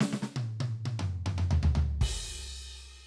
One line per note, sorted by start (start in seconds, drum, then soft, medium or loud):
0.00 snare loud
0.12 snare medium
0.22 snare medium
0.36 high tom loud
0.60 high tom loud
0.85 high tom loud
0.99 mid tom loud
1.26 mid tom loud
1.38 mid tom loud
1.51 floor tom loud
1.63 floor tom loud
1.75 floor tom loud
2.01 kick medium
2.01 crash loud